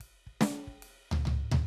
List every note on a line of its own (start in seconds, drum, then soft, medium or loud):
0.00 kick soft
0.00 ride medium
0.26 kick soft
0.41 snare loud
0.41 ride medium
0.67 kick soft
0.82 ride medium
1.11 floor tom loud
1.11 high tom loud
1.25 floor tom medium
1.25 high tom loud
1.51 floor tom loud
1.51 high tom loud